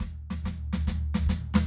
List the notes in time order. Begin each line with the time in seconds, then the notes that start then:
0.04 kick, snare, floor tom
0.31 snare, floor tom
0.45 kick, snare, floor tom
0.74 snare, floor tom
0.88 kick, snare, floor tom
1.15 snare, floor tom
1.27 kick, snare, floor tom
1.55 snare, floor tom